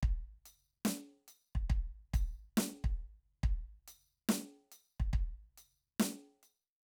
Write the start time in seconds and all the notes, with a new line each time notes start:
0.03 kick
0.46 closed hi-hat
0.86 snare
1.28 closed hi-hat
1.56 kick
1.70 kick
2.14 kick, closed hi-hat
2.58 snare
2.84 kick
3.44 kick, ride
3.88 closed hi-hat
4.29 snare
4.72 closed hi-hat
5.00 kick
5.14 kick, crash
5.58 closed hi-hat
6.00 snare
6.43 closed hi-hat